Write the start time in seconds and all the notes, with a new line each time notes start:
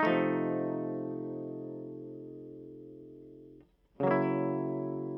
0.00 A3 D#4
0.08 F3
0.12 C3
4.02 C#3 F#3
4.08 A#3 E4